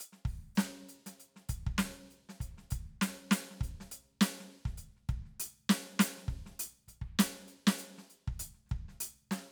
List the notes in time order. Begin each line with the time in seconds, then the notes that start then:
0.00 closed hi-hat
0.12 snare
0.25 open hi-hat, kick
0.55 snare, hi-hat pedal
0.59 closed hi-hat
0.77 snare
0.89 closed hi-hat
1.06 closed hi-hat, snare
1.20 closed hi-hat
1.36 snare
1.49 closed hi-hat, kick
1.67 kick
1.78 open hi-hat, snare, hi-hat pedal
2.10 closed hi-hat
2.29 snare, closed hi-hat
2.40 closed hi-hat, kick
2.58 snare
2.71 closed hi-hat, kick
3.01 closed hi-hat, snare
3.31 closed hi-hat, snare
3.50 snare
3.61 closed hi-hat, kick
3.80 snare
3.91 closed hi-hat
4.21 closed hi-hat, snare
4.40 snare
4.65 kick, snare
4.78 closed hi-hat
4.96 snare
5.09 kick, closed hi-hat
5.25 snare
5.29 snare
5.40 closed hi-hat
5.69 closed hi-hat, snare
5.99 closed hi-hat, snare
6.18 snare
6.28 kick, closed hi-hat
6.46 snare
6.59 closed hi-hat
6.88 closed hi-hat, kick, snare
7.01 kick
7.19 closed hi-hat, snare
7.39 snare
7.48 closed hi-hat
7.67 snare
7.79 closed hi-hat
7.98 snare
8.10 closed hi-hat
8.28 kick
8.32 snare
8.39 closed hi-hat
8.54 snare
8.66 snare, closed hi-hat
8.71 kick
8.88 snare
9.00 closed hi-hat
9.31 closed hi-hat, snare
9.36 snare